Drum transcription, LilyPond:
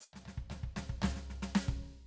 \new DrumStaff \drummode { \time 4/4 \tempo 4 = 116 hhp16 <tomfh sn>16 <tomfh sn>16 bd16 <tomfh sn>16 bd16 <sn tomfh>16 bd16 <tomfh sn>16 sn16 sn16 sn16 sn16 bd8. | }